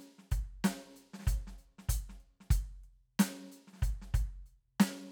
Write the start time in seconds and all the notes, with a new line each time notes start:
0.01 closed hi-hat
0.19 snare
0.24 snare
0.32 closed hi-hat, kick
0.65 closed hi-hat, snare
0.97 closed hi-hat
1.14 snare
1.20 snare
1.23 snare
1.26 closed hi-hat, kick, snare
1.48 snare
1.59 closed hi-hat
1.79 snare
1.89 closed hi-hat, kick
2.10 snare
2.21 closed hi-hat
2.41 snare
2.51 closed hi-hat, kick
2.84 closed hi-hat
3.20 closed hi-hat, snare
3.53 closed hi-hat
3.68 snare
3.74 snare
3.77 snare
3.79 snare
3.83 closed hi-hat, kick
4.02 snare
4.15 closed hi-hat, kick
4.47 closed hi-hat
4.81 closed hi-hat, snare